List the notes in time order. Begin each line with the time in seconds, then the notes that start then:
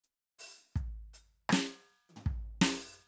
0.04 closed hi-hat
0.38 open hi-hat
0.72 kick, hi-hat pedal
0.76 closed hi-hat
1.13 closed hi-hat
1.49 cross-stick, snare
2.09 high tom
2.16 floor tom
2.26 kick
2.61 open hi-hat, snare
2.99 hi-hat pedal